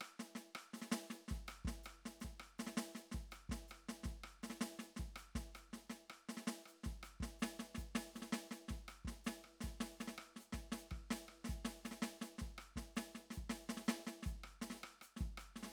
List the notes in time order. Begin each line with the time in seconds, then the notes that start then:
0.01 cross-stick, hi-hat pedal
0.20 snare
0.35 snare, hi-hat pedal
0.55 cross-stick
0.74 snare, hi-hat pedal
0.82 snare
0.92 snare
1.10 snare, hi-hat pedal
1.28 snare
1.31 kick, snare
1.48 cross-stick, hi-hat pedal
1.65 kick, snare
1.84 cross-stick, hi-hat pedal
2.06 snare
2.21 snare, hi-hat pedal
2.25 kick
2.40 cross-stick
2.59 snare, hi-hat pedal
2.67 snare
2.77 snare
2.95 snare, hi-hat pedal
3.12 kick, snare
3.32 cross-stick, hi-hat pedal
3.50 kick, snare
3.69 cross-stick, hi-hat pedal
3.89 snare
4.04 kick, snare, hi-hat pedal
4.24 cross-stick
4.43 snare, hi-hat pedal
4.50 snare
4.61 snare
4.79 snare, hi-hat pedal
4.97 kick, snare
5.16 cross-stick, hi-hat pedal
5.36 kick, snare
5.55 cross-stick, hi-hat pedal
5.73 snare
5.90 snare, hi-hat pedal
6.10 cross-stick
6.29 snare, hi-hat pedal
6.37 snare
6.47 snare
6.66 cross-stick, hi-hat pedal
6.84 kick, snare
7.03 cross-stick, hi-hat pedal
7.21 kick, snare
7.40 snare, hi-hat pedal
7.60 snare
7.75 kick, snare, hi-hat pedal
7.95 snare
8.16 snare, hi-hat pedal
8.22 snare
8.33 snare
8.51 snare, hi-hat pedal
8.69 kick, snare
8.88 cross-stick, hi-hat pedal
9.05 kick, snare
9.25 snare, hi-hat pedal
9.44 cross-stick
9.61 snare, hi-hat pedal
9.63 kick, snare
9.81 snare
10.00 snare, hi-hat pedal
10.08 snare
10.18 cross-stick
10.36 snare
10.40 hi-hat pedal
10.53 kick, snare
10.72 snare
10.79 hi-hat pedal
10.91 kick, cross-stick
11.11 snare
11.16 hi-hat pedal
11.29 cross-stick
11.45 snare
11.46 kick, snare, hi-hat pedal
11.65 snare
11.85 snare, hi-hat pedal
11.91 snare
12.02 snare
12.22 snare, hi-hat pedal
12.39 kick, snare
12.58 cross-stick, hi-hat pedal
12.76 kick, snare
12.96 snare, hi-hat pedal
13.15 snare
13.31 snare, hi-hat pedal
13.38 kick
13.50 snare
13.69 snare
13.77 snare
13.85 snare, hi-hat pedal
14.07 snare
14.23 kick, snare, hi-hat pedal
14.44 cross-stick
14.62 snare, hi-hat pedal
14.70 snare
14.84 cross-stick
15.02 cross-stick, hi-hat pedal
15.17 snare
15.21 kick
15.38 cross-stick, hi-hat pedal
15.56 snare
15.63 snare